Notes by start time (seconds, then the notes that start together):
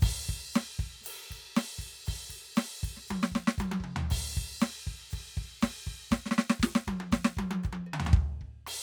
0.01 kick, hi-hat pedal, crash
0.30 kick
0.54 snare, hi-hat pedal, crash
0.80 kick, crash
1.02 snare, hi-hat pedal
1.07 crash
1.31 kick, crash
1.56 snare, hi-hat pedal, crash
1.79 kick, crash
2.06 kick, hi-hat pedal, crash
2.30 kick, crash
2.56 snare, hi-hat pedal, crash
2.84 kick, crash
2.97 snare
3.08 kick, hi-hat pedal, high tom
3.24 snare
3.32 kick, snare
3.48 snare
3.59 kick, hi-hat pedal, high tom
3.72 high tom
3.81 kick, mid tom
3.97 floor tom
4.11 kick, hi-hat pedal, crash
4.38 kick, crash
4.61 snare, hi-hat pedal, crash
4.88 kick, crash
5.11 kick, hi-hat pedal, crash
5.38 kick, crash
5.62 kick, snare, hi-hat pedal, crash
5.87 kick, crash
6.12 kick, snare, hi-hat pedal
6.27 snare
6.32 snare
6.39 snare
6.51 snare
6.60 kick, snare, hi-hat pedal
6.76 snare
6.88 kick, high tom
7.01 high tom
7.13 kick, snare, hi-hat pedal
7.25 snare
7.38 kick, high tom
7.52 high tom
7.64 kick, hi-hat pedal, high tom
7.74 high tom
7.80 kick
7.87 percussion
7.94 mid tom
8.01 floor tom
8.06 floor tom, ride
8.14 kick
8.42 kick
8.67 cross-stick, crash